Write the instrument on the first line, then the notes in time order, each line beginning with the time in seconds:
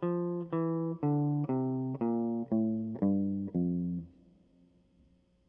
electric guitar
0.03 F3
0.53 E3
1.04 D3
1.50 C3
2.02 A#2
2.53 A2
3.03 G2
3.56 F2
4.05 E2